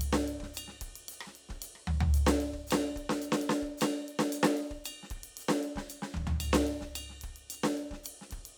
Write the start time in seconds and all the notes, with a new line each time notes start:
0.01 hi-hat pedal, ride
0.13 snare
0.28 ride
0.41 kick, snare
0.46 kick
0.55 hi-hat pedal, ride bell
0.68 snare
0.74 snare
0.82 kick, ride
0.87 kick, snare
0.91 snare
0.96 ride
1.09 hi-hat pedal, ride
1.21 cross-stick
1.27 snare
1.36 ride
1.49 kick, snare
1.57 kick
1.63 hi-hat pedal, ride
1.76 cross-stick
1.88 floor tom
2.01 floor tom
2.15 hi-hat pedal, ride
2.27 snare
2.41 ride
2.54 kick
2.68 hi-hat pedal, ride bell
2.73 snare
2.97 kick, ride
3.02 kick
3.10 snare
3.23 hi-hat pedal, ride bell
3.33 snare
3.42 ride
3.50 snare
3.63 kick
3.78 hi-hat pedal, ride bell
3.82 snare
4.09 ride
4.20 snare
4.33 hi-hat pedal, ride bell
4.44 snare
4.58 ride
4.72 kick
4.78 kick
4.85 hi-hat pedal, ride bell
5.03 snare
5.11 kick, ride
5.18 kick
5.24 ride
5.38 hi-hat pedal, ride
5.49 snare
5.64 ride
5.76 kick, snare
5.90 hi-hat pedal, ride bell
6.03 snare
6.15 kick, floor tom
6.23 kick
6.28 floor tom
6.41 hi-hat pedal, ride bell
6.54 snare
6.68 ride
6.81 kick, snare
6.96 hi-hat pedal, ride bell
7.10 snare
7.22 kick, ride
7.30 kick, snare
7.37 ride
7.51 hi-hat pedal, ride bell
7.64 snare
7.78 ride
7.92 kick, snare
8.04 hi-hat pedal, ride
8.22 snare
8.31 kick, snare, ride
8.36 kick, snare
8.46 ride